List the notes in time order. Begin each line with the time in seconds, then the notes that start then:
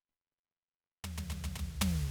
1.04 floor tom, high tom
1.18 floor tom, high tom
1.30 floor tom, high tom
1.44 floor tom, high tom
1.55 floor tom, high tom
1.81 floor tom, high tom